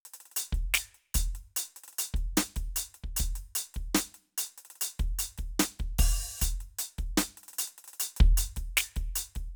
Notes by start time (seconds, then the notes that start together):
0.05 closed hi-hat
0.14 closed hi-hat
0.20 closed hi-hat
0.26 closed hi-hat
0.32 closed hi-hat
0.36 closed hi-hat
0.53 kick, closed hi-hat
0.73 closed hi-hat, kick, snare
0.94 closed hi-hat
1.14 closed hi-hat, kick
1.35 closed hi-hat
1.47 closed hi-hat
1.56 closed hi-hat
1.65 closed hi-hat
1.76 closed hi-hat
1.84 closed hi-hat
1.88 closed hi-hat
1.93 closed hi-hat
1.98 closed hi-hat
2.14 kick, closed hi-hat
2.37 closed hi-hat, snare
2.56 kick, closed hi-hat
2.76 closed hi-hat
2.94 closed hi-hat
3.04 kick
3.16 closed hi-hat, kick
3.35 closed hi-hat
3.55 closed hi-hat
3.74 kick, closed hi-hat
3.95 closed hi-hat, snare
4.14 closed hi-hat
4.38 closed hi-hat
4.46 closed hi-hat
4.58 closed hi-hat
4.65 closed hi-hat
4.70 closed hi-hat
4.75 closed hi-hat
4.81 closed hi-hat
4.99 kick, closed hi-hat
5.19 closed hi-hat
5.38 kick, closed hi-hat
5.59 closed hi-hat, snare
5.79 kick, closed hi-hat
5.99 open hi-hat, kick
6.39 closed hi-hat, kick, hi-hat pedal
6.60 closed hi-hat
6.79 closed hi-hat
6.98 kick, closed hi-hat
7.17 closed hi-hat, snare
7.37 closed hi-hat
7.43 closed hi-hat
7.48 closed hi-hat
7.58 closed hi-hat
7.67 closed hi-hat
7.78 closed hi-hat
7.84 closed hi-hat
7.93 closed hi-hat
8.00 closed hi-hat
8.16 kick, closed hi-hat
8.37 closed hi-hat
8.56 kick, closed hi-hat
8.77 closed hi-hat, snare
8.96 kick, closed hi-hat
9.16 closed hi-hat
9.35 kick, closed hi-hat